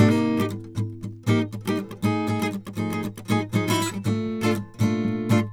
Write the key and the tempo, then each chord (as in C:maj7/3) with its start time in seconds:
G minor, 119 BPM
0.00 C:min7
2.02 F:7(7,#9,*5)
4.03 A#:maj7